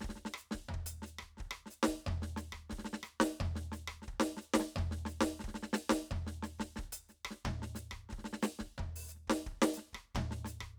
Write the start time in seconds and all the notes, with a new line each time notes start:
0.01 kick, snare
0.09 snare
0.16 snare
0.25 snare
0.34 cross-stick, hi-hat pedal
0.51 kick, snare
0.69 floor tom
0.74 kick
0.86 closed hi-hat
1.02 snare, hi-hat pedal
1.19 kick, cross-stick
1.23 cross-stick
1.37 kick, snare
1.51 cross-stick
1.66 snare
1.71 hi-hat pedal
1.83 snare
1.88 kick
2.07 kick, floor tom
2.22 snare
2.37 snare, hi-hat pedal
2.53 kick, cross-stick
2.70 kick, snare
2.79 snare
2.85 snare
2.93 snare
3.03 cross-stick, hi-hat pedal
3.20 kick, snare
3.40 kick, floor tom
3.56 snare
3.72 snare, hi-hat pedal
3.88 kick, cross-stick
4.02 snare
4.08 kick
4.20 snare
4.37 snare
4.41 hi-hat pedal
4.54 kick, snare
4.60 snare
4.76 kick, floor tom
4.91 snare
5.06 snare, hi-hat pedal
5.21 kick, snare
5.40 snare
5.44 kick, snare
5.55 snare
5.63 snare
5.73 snare, hi-hat pedal
5.90 kick, snare
6.11 kick, floor tom
6.27 snare
6.43 snare, hi-hat pedal
6.59 kick, snare
6.76 kick, snare
6.93 open hi-hat
7.09 snare, hi-hat pedal
7.25 kick, cross-stick
7.31 snare
7.45 kick, floor tom
7.62 snare
7.75 snare, hi-hat pedal
7.91 kick, cross-stick
8.09 kick, snare
8.19 snare
8.25 snare
8.33 snare
8.43 hi-hat pedal
8.59 kick, snare
8.78 kick, floor tom
8.96 open hi-hat
9.09 hi-hat pedal
9.16 snare
9.28 kick, snare
9.47 kick, snare
9.62 snare
9.74 snare, hi-hat pedal
9.93 kick, cross-stick
10.15 kick, floor tom
10.31 snare
10.45 snare, hi-hat pedal
10.61 kick, cross-stick